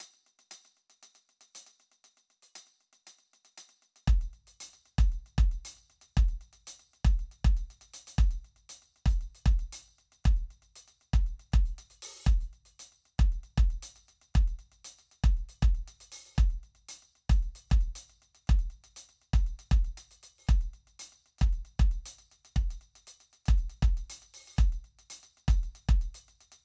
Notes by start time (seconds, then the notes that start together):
0.01 closed hi-hat
0.14 closed hi-hat
0.26 closed hi-hat
0.39 closed hi-hat
0.51 closed hi-hat
0.65 closed hi-hat
0.77 closed hi-hat
0.90 closed hi-hat
1.03 closed hi-hat
1.15 closed hi-hat
1.29 closed hi-hat
1.41 closed hi-hat
1.55 closed hi-hat
1.67 closed hi-hat
1.80 closed hi-hat
1.92 closed hi-hat
2.04 closed hi-hat
2.17 closed hi-hat
2.30 closed hi-hat
2.42 closed hi-hat
2.55 closed hi-hat
2.67 closed hi-hat
2.81 closed hi-hat
2.93 closed hi-hat
3.07 closed hi-hat
3.19 closed hi-hat
3.33 closed hi-hat
3.45 closed hi-hat
3.58 closed hi-hat
3.69 closed hi-hat
3.82 closed hi-hat
3.96 closed hi-hat
4.08 kick, closed hi-hat
4.21 closed hi-hat
4.33 closed hi-hat
4.47 closed hi-hat
4.60 closed hi-hat
4.73 closed hi-hat
4.86 closed hi-hat
4.98 kick, closed hi-hat
5.12 closed hi-hat
5.26 closed hi-hat
5.38 kick, closed hi-hat
5.51 closed hi-hat
5.65 closed hi-hat
5.77 closed hi-hat
5.90 closed hi-hat
6.01 closed hi-hat
6.17 kick, closed hi-hat
6.28 closed hi-hat
6.41 closed hi-hat
6.53 closed hi-hat
6.67 closed hi-hat
6.79 closed hi-hat
6.93 closed hi-hat
7.05 kick, closed hi-hat
7.19 closed hi-hat
7.31 closed hi-hat
7.45 kick, closed hi-hat
7.57 closed hi-hat
7.70 closed hi-hat
7.81 closed hi-hat
7.94 closed hi-hat
8.07 closed hi-hat
8.18 kick, closed hi-hat
8.31 closed hi-hat
8.45 closed hi-hat
8.56 closed hi-hat
8.69 closed hi-hat
8.82 closed hi-hat
8.96 closed hi-hat
9.06 closed hi-hat, kick
9.21 closed hi-hat
9.35 closed hi-hat
9.46 kick, closed hi-hat
9.59 closed hi-hat
9.73 closed hi-hat
9.88 closed hi-hat
9.99 closed hi-hat
10.12 closed hi-hat
10.24 kick, closed hi-hat
10.37 closed hi-hat
10.51 closed hi-hat
10.62 closed hi-hat
10.76 closed hi-hat
10.88 closed hi-hat
11.01 closed hi-hat
11.13 kick, closed hi-hat
11.26 closed hi-hat
11.40 closed hi-hat
11.52 kick, closed hi-hat
11.65 closed hi-hat
11.78 closed hi-hat
11.90 closed hi-hat
12.02 percussion
12.18 percussion
12.25 kick, hi-hat pedal
12.29 closed hi-hat
12.41 closed hi-hat
12.53 closed hi-hat
12.65 closed hi-hat
12.79 closed hi-hat
12.92 closed hi-hat
13.05 closed hi-hat
13.18 kick, closed hi-hat
13.32 closed hi-hat
13.43 closed hi-hat
13.58 kick, closed hi-hat
13.70 closed hi-hat
13.83 closed hi-hat
13.96 closed hi-hat
14.08 closed hi-hat
14.22 closed hi-hat
14.34 kick, closed hi-hat
14.48 closed hi-hat
14.59 closed hi-hat
14.72 closed hi-hat
14.85 closed hi-hat
14.99 closed hi-hat
15.11 closed hi-hat
15.24 kick, closed hi-hat
15.37 closed hi-hat
15.49 closed hi-hat
15.62 kick, closed hi-hat
15.75 closed hi-hat
15.88 closed hi-hat
16.00 closed hi-hat
16.12 percussion
16.25 percussion
16.35 kick, hi-hat pedal
16.39 closed hi-hat
16.50 closed hi-hat
16.63 closed hi-hat
16.75 closed hi-hat
16.89 closed hi-hat
17.02 closed hi-hat
17.15 closed hi-hat
17.29 closed hi-hat, kick
17.43 closed hi-hat
17.55 closed hi-hat
17.70 kick, closed hi-hat
17.81 closed hi-hat
17.95 closed hi-hat
18.10 closed hi-hat
18.22 closed hi-hat
18.35 closed hi-hat
18.47 kick, closed hi-hat
18.59 closed hi-hat
18.70 closed hi-hat
18.84 closed hi-hat
18.96 closed hi-hat
19.09 closed hi-hat
19.22 closed hi-hat
19.33 kick, closed hi-hat
19.46 closed hi-hat
19.59 closed hi-hat
19.71 kick, closed hi-hat
19.85 closed hi-hat
19.97 closed hi-hat
20.11 closed hi-hat
20.23 percussion
20.38 percussion
20.47 kick, closed hi-hat, hi-hat pedal
20.61 closed hi-hat
20.73 closed hi-hat
20.87 closed hi-hat
20.99 closed hi-hat
21.12 closed hi-hat
21.26 closed hi-hat
21.38 kick, closed hi-hat
21.53 closed hi-hat
21.65 closed hi-hat
21.79 kick, closed hi-hat
21.91 closed hi-hat
22.06 closed hi-hat
22.19 closed hi-hat
22.32 closed hi-hat
22.45 closed hi-hat
22.56 kick, closed hi-hat
22.71 closed hi-hat
22.81 closed hi-hat
22.95 closed hi-hat
23.07 closed hi-hat
23.20 closed hi-hat
23.33 closed hi-hat
23.46 kick, closed hi-hat
23.58 closed hi-hat
23.70 closed hi-hat
23.82 kick, closed hi-hat
23.97 closed hi-hat
24.10 closed hi-hat
24.22 closed hi-hat
24.34 percussion
24.47 percussion
24.57 kick, closed hi-hat, hi-hat pedal
24.72 closed hi-hat
24.84 closed hi-hat
24.99 closed hi-hat
25.10 closed hi-hat
25.23 closed hi-hat
25.37 closed hi-hat
25.48 kick, closed hi-hat
25.63 closed hi-hat
25.75 closed hi-hat
25.89 kick, closed hi-hat
26.01 closed hi-hat
26.14 closed hi-hat
26.28 closed hi-hat
26.41 closed hi-hat
26.52 closed hi-hat